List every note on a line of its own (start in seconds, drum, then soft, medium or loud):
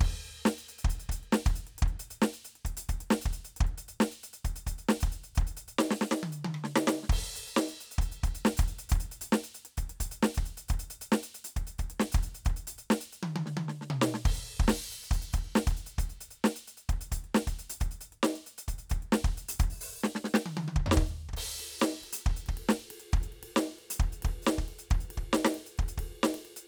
0.01 kick loud
0.01 crash medium
0.10 closed hi-hat soft
0.25 closed hi-hat soft
0.35 closed hi-hat soft
0.46 snare loud
0.58 closed hi-hat soft
0.69 closed hi-hat medium
0.79 closed hi-hat medium
0.85 kick loud
0.90 closed hi-hat medium
1.09 closed hi-hat medium
1.09 kick medium
1.23 closed hi-hat soft
1.33 snare loud
1.46 closed hi-hat soft
1.46 kick loud
1.56 closed hi-hat medium
1.67 closed hi-hat soft
1.79 kick loud
1.79 closed hi-hat medium
1.88 closed hi-hat soft
2.00 closed hi-hat medium
2.11 closed hi-hat medium
2.22 snare loud
2.34 closed hi-hat medium
2.45 closed hi-hat medium
2.56 closed hi-hat soft
2.65 kick medium
2.65 closed hi-hat medium
2.77 closed hi-hat loud
2.89 closed hi-hat medium
2.89 kick medium
3.01 closed hi-hat medium
3.11 snare loud
3.22 closed hi-hat medium
3.26 kick medium
3.33 closed hi-hat medium
3.45 closed hi-hat medium
3.57 closed hi-hat medium
3.61 kick loud
3.67 closed hi-hat soft
3.78 closed hi-hat medium
3.89 closed hi-hat medium
4.01 snare loud
4.12 closed hi-hat soft
4.24 closed hi-hat medium
4.34 closed hi-hat medium
4.45 closed hi-hat medium
4.45 kick medium
4.56 closed hi-hat medium
4.67 closed hi-hat medium
4.67 kick medium
4.79 closed hi-hat soft
4.89 snare loud
5.01 closed hi-hat medium
5.01 kick loud
5.12 closed hi-hat medium
5.24 closed hi-hat medium
5.35 closed hi-hat medium
5.35 kick loud
5.47 closed hi-hat medium
5.68 closed hi-hat medium
5.79 snare loud
5.91 snare loud
6.01 snare loud
6.12 snare loud
6.23 high tom loud
6.33 closed hi-hat medium
6.45 high tom loud
6.55 cross-stick medium
6.64 snare medium
6.76 snare loud
6.88 snare loud
7.03 snare soft
7.10 kick loud
7.10 crash loud
7.25 closed hi-hat soft
7.36 closed hi-hat medium
7.48 closed hi-hat medium
7.57 snare loud
7.69 closed hi-hat medium
7.81 closed hi-hat medium
7.92 closed hi-hat medium
7.99 kick loud
8.12 closed hi-hat medium
8.24 closed hi-hat medium
8.24 kick loud
8.35 closed hi-hat medium
8.45 snare loud
8.57 closed hi-hat medium
8.57 kick loud
8.68 closed hi-hat medium
8.79 closed hi-hat medium
8.90 closed hi-hat medium
8.90 kick loud
9.00 closed hi-hat medium
9.12 closed hi-hat medium
9.21 closed hi-hat loud
9.33 snare loud
9.44 closed hi-hat medium
9.55 closed hi-hat medium
9.65 closed hi-hat medium
9.78 closed hi-hat medium
9.78 kick medium
9.90 closed hi-hat medium
10.00 closed hi-hat loud
10.00 kick medium
10.12 closed hi-hat medium
10.23 snare loud
10.35 closed hi-hat medium
10.35 kick loud
10.46 closed hi-hat medium
10.58 closed hi-hat medium
10.69 closed hi-hat medium
10.69 kick loud
10.80 closed hi-hat medium
10.90 closed hi-hat medium
11.02 closed hi-hat medium
11.12 snare loud
11.23 closed hi-hat medium
11.35 closed hi-hat medium
11.45 closed hi-hat medium
11.57 kick medium
11.57 closed hi-hat medium
11.67 closed hi-hat medium
11.79 closed hi-hat medium
11.79 kick medium
11.90 closed hi-hat medium
12.00 snare loud
12.12 closed hi-hat medium
12.12 kick loud
12.23 closed hi-hat medium
12.35 closed hi-hat medium
12.45 closed hi-hat medium
12.45 kick loud
12.57 closed hi-hat medium
12.67 closed hi-hat loud
12.78 closed hi-hat medium
12.91 snare loud
13.01 closed hi-hat medium
13.13 closed hi-hat medium
13.23 high tom loud
13.36 high tom loud
13.46 snare medium
13.57 high tom loud
13.69 snare medium
13.82 snare soft
13.90 mid tom loud
14.02 snare loud
14.14 snare medium
14.26 kick loud
14.26 crash medium
14.35 closed hi-hat medium
14.60 kick loud
14.68 snare loud
14.68 crash loud
14.92 closed hi-hat medium
15.04 closed hi-hat medium
15.11 closed hi-hat medium
15.11 kick loud
15.22 closed hi-hat medium
15.33 closed hi-hat medium
15.33 kick loud
15.45 closed hi-hat soft
15.56 snare loud
15.67 closed hi-hat medium
15.67 kick loud
15.77 closed hi-hat medium
15.87 closed hi-hat medium
15.99 closed hi-hat medium
15.99 kick loud
16.10 closed hi-hat soft
16.21 closed hi-hat medium
16.44 snare loud
16.56 closed hi-hat medium
16.68 closed hi-hat medium
16.77 closed hi-hat medium
16.89 kick loud
16.89 closed hi-hat medium
17.01 closed hi-hat medium
17.12 closed hi-hat medium
17.12 kick medium
17.24 closed hi-hat soft
17.35 snare loud
17.47 closed hi-hat medium
17.47 kick medium
17.59 closed hi-hat medium
17.70 closed hi-hat loud
17.81 closed hi-hat medium
17.81 kick loud
17.91 closed hi-hat soft
18.01 closed hi-hat medium
18.13 closed hi-hat soft
18.23 snare loud
18.36 closed hi-hat medium
18.47 closed hi-hat medium
18.58 closed hi-hat medium
18.68 closed hi-hat medium
18.68 kick medium
18.79 closed hi-hat soft
18.90 closed hi-hat medium
18.90 kick loud
19.03 closed hi-hat soft
19.13 snare loud
19.25 kick loud
19.25 closed hi-hat soft
19.38 closed hi-hat medium
19.49 closed hi-hat loud
19.60 closed hi-hat medium
19.60 kick loud
19.70 open hi-hat medium
19.81 open hi-hat loud
20.01 snare loud
20.01 hi-hat pedal soft
20.15 snare medium
20.25 snare medium
20.34 snare loud
20.46 high tom loud
20.57 high tom loud
20.68 high tom medium
20.76 kick loud
20.87 floor tom loud
20.92 snare loud
20.97 kick loud
21.06 hi-hat pedal soft
21.29 kick soft
21.34 kick medium
21.34 crash loud
21.60 ride medium
21.79 snare loud
21.79 hi-hat pedal medium
22.02 kick soft
22.02 ride medium
22.13 closed hi-hat loud
22.25 kick loud
22.25 ride soft
22.37 closed hi-hat medium
22.47 kick medium
22.47 ride medium
22.57 ride medium
22.69 snare loud
22.80 ride soft
22.91 ride medium
23.00 closed hi-hat medium
23.13 kick loud
23.13 ride soft
23.23 closed hi-hat medium
23.33 ride soft
23.43 ride medium
23.57 snare loud
23.79 ride soft
23.91 closed hi-hat loud
24.00 kick loud
24.00 ride soft
24.13 closed hi-hat medium
24.23 kick loud
24.23 ride medium
24.43 hi-hat pedal medium
24.47 snare loud
24.47 ride medium
24.59 kick medium
24.69 ride medium
24.79 closed hi-hat medium
24.91 kick loud
24.91 ride medium
25.01 closed hi-hat soft
25.11 ride medium
25.18 kick medium
25.33 snare loud
25.45 snare loud
25.55 ride medium
25.66 closed hi-hat medium
25.78 kick loud
25.78 ride soft
25.89 closed hi-hat medium
25.98 kick medium
25.98 ride medium
26.16 ride soft
26.24 snare loud
26.35 ride medium
26.45 ride medium
26.57 closed hi-hat medium